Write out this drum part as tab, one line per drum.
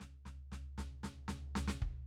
SD |o-o-o-o-o-o-oo--|
FT |o-o-o-o-o-o-oo--|
BD |--------------o-|